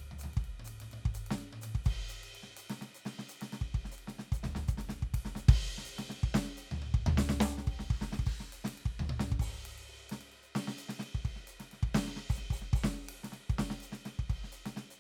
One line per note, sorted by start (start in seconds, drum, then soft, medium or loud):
0.01 ride medium
0.12 floor tom soft
0.19 hi-hat pedal medium
0.19 ride medium
0.24 floor tom medium
0.34 kick medium
0.34 ride soft
0.40 hi-hat pedal soft
0.45 ride soft
0.60 high tom medium
0.65 hi-hat pedal medium
0.65 ride medium
0.81 high tom medium
0.81 ride medium
0.92 high tom medium
0.92 ride soft
1.06 kick medium
1.15 hi-hat pedal medium
1.15 ride medium
1.27 ride medium
1.31 snare medium
1.36 hi-hat pedal soft
1.36 ride soft
1.54 high tom medium
1.62 hi-hat pedal medium
1.62 high tom medium
1.62 ride medium
1.76 kick medium
1.85 kick medium
1.85 hi-hat pedal soft
1.85 ride medium
2.09 hi-hat pedal medium
2.09 ride soft
2.24 ride medium
2.36 ride medium
2.44 snare soft
2.58 hi-hat pedal medium
2.58 ride medium
2.71 snare medium
2.71 ride medium
2.82 snare soft
2.82 ride soft
2.95 hi-hat pedal medium
3.06 snare medium
3.06 ride medium
3.19 snare soft
3.30 hi-hat pedal medium
3.30 ride medium
3.42 snare soft
3.42 ride medium
3.53 snare soft
3.53 ride soft
3.62 kick medium
3.75 kick medium
3.75 ride soft
3.85 snare soft
3.92 hi-hat pedal medium
3.99 ride soft
4.08 snare soft
4.08 ride soft
4.19 snare soft
4.19 ride soft
4.33 kick medium
4.33 hi-hat pedal medium
4.44 snare medium
4.44 floor tom medium
4.56 snare medium
4.56 floor tom medium
4.69 kick medium
4.69 hi-hat pedal medium
4.78 snare soft
4.78 ride medium
4.90 snare medium
4.90 ride soft
5.03 kick medium
5.15 kick medium
5.15 ride medium
5.26 snare soft
5.36 snare soft
5.36 hi-hat pedal medium
5.49 kick loud
5.49 ride loud
5.78 snare soft
5.86 hi-hat pedal medium
5.86 ride medium
5.99 snare medium
5.99 ride medium
6.10 snare soft
6.10 ride soft
6.24 kick medium
6.35 snare loud
6.35 ride medium
6.46 snare soft
6.49 snare soft
6.51 snare soft
6.58 hi-hat pedal medium
6.58 ride soft
6.72 floor tom medium
6.83 high tom medium
6.95 kick medium
7.07 floor tom loud
7.18 snare loud
7.30 snare medium
7.41 snare loud
7.58 snare soft
7.68 kick medium
7.68 ride medium
7.80 snare soft
7.91 kick medium
7.91 crash soft
8.02 snare medium
8.13 snare medium
8.20 kick medium
8.27 kick medium
8.27 crash medium
8.41 snare soft
8.53 hi-hat pedal medium
8.53 ride medium
8.65 snare medium
8.65 ride medium
8.79 ride soft
8.86 kick medium
9.00 floor tom medium
9.10 high tom medium
9.20 snare medium
9.33 kick medium
9.40 open hi-hat medium
9.40 kick medium
9.40 ride medium
9.66 ride medium
9.79 ride soft
9.89 ride soft
10.10 snare medium
10.10 ride medium
10.22 ride soft
10.33 ride soft
10.44 hi-hat pedal soft
10.56 snare medium
10.56 ride medium
10.68 snare medium
10.79 hi-hat pedal medium
10.79 ride medium
10.89 snare medium
10.89 ride medium
11.00 snare medium
11.04 ride soft
11.15 kick medium
11.26 kick medium
11.26 ride soft
11.36 snare soft
11.48 hi-hat pedal medium
11.48 ride soft
11.60 snare soft
11.60 ride medium
11.72 snare soft
11.72 ride soft
11.84 kick medium
11.95 snare loud
11.95 ride medium
12.08 snare soft
12.17 snare soft
12.30 open hi-hat medium
12.30 kick medium
12.36 snare soft
12.36 hi-hat pedal medium
12.51 open hi-hat medium
12.51 kick medium
12.57 hi-hat pedal medium
12.62 snare soft
12.74 open hi-hat medium
12.74 kick medium
12.84 snare medium
13.10 ride medium
13.24 snare soft
13.24 ride medium
13.33 snare soft
13.33 ride soft
13.50 kick medium
13.50 hi-hat pedal soft
13.59 snare medium
13.59 ride medium
13.71 snare medium
13.81 hi-hat pedal medium
13.81 ride soft
13.93 snare soft
13.93 ride soft
14.06 snare soft
14.06 ride soft
14.20 kick medium
14.30 kick medium
14.30 ride medium
14.44 snare soft
14.53 hi-hat pedal medium
14.53 ride soft
14.67 snare medium
14.67 ride soft
14.77 snare soft
14.77 ride soft
14.91 hi-hat pedal medium